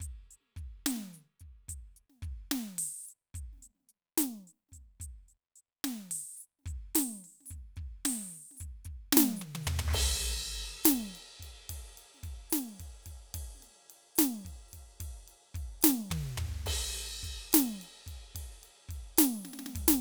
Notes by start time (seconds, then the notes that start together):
0.01 closed hi-hat, kick
0.31 closed hi-hat
0.41 snare
0.57 kick, closed hi-hat
0.87 closed hi-hat, snare
1.14 snare, closed hi-hat, hi-hat pedal
1.40 kick, closed hi-hat
1.69 closed hi-hat, kick
1.97 closed hi-hat
2.10 snare
2.23 kick, closed hi-hat
2.29 kick
2.52 snare, closed hi-hat
2.79 open hi-hat
3.05 closed hi-hat, hi-hat pedal
3.35 closed hi-hat, kick
3.54 snare
3.59 snare
3.63 closed hi-hat, snare
3.76 snare
3.81 snare
3.90 closed hi-hat
4.18 closed hi-hat, snare
4.48 closed hi-hat
4.70 kick, snare
4.74 closed hi-hat, snare
5.01 closed hi-hat, kick
5.29 closed hi-hat
5.56 closed hi-hat
5.85 closed hi-hat, snare
6.12 open hi-hat
6.38 closed hi-hat, hi-hat pedal
6.60 snare
6.64 kick, snare
6.67 closed hi-hat, snare
6.72 kick
6.96 open hi-hat, snare
7.10 snare
7.25 open hi-hat
7.41 snare
7.46 snare, hi-hat pedal
7.49 closed hi-hat, kick, snare
7.77 kick, closed hi-hat
7.83 kick
8.06 open hi-hat, snare
8.33 open hi-hat, snare
8.52 snare
8.56 snare, hi-hat pedal
8.61 closed hi-hat, kick
8.85 kick, closed hi-hat
9.13 snare
9.18 snare
9.37 hi-hat pedal
9.42 mid tom
9.56 mid tom
9.64 floor tom, hi-hat pedal
9.80 floor tom
9.89 percussion, hi-hat pedal
9.94 kick, crash
10.01 kick
10.55 ride
10.85 snare, hi-hat pedal, ride
11.16 ride
11.39 kick, snare
11.43 ride
11.70 kick, ride
11.98 ride
12.15 snare
12.21 kick, snare, ride
12.51 snare, hi-hat pedal, ride
12.80 kick, ride
13.03 kick, hi-hat pedal, ride
13.35 kick, ride
13.56 snare
13.61 snare, ride
13.91 ride
14.16 snare, hi-hat pedal, ride
14.46 kick, snare, ride
14.69 hi-hat pedal
14.74 kick, ride
15.01 kick, ride
15.28 hi-hat pedal, ride
15.55 kick, ride
15.82 snare, hi-hat pedal, ride
15.91 snare
16.11 kick, mid tom
16.38 kick, floor tom
16.45 kick
16.67 kick, crash
16.73 kick
17.22 kick, snare, ride
17.53 snare, hi-hat pedal, ride
17.77 hi-hat pedal
17.82 snare, ride
17.93 snare
18.04 kick, hi-hat pedal
18.09 ride
18.36 kick, ride
18.61 hi-hat pedal, ride
18.90 kick, ride
19.18 snare, hi-hat pedal, ride
19.46 snare
19.54 snare
19.60 snare
19.67 snare
19.76 kick, ride
19.89 snare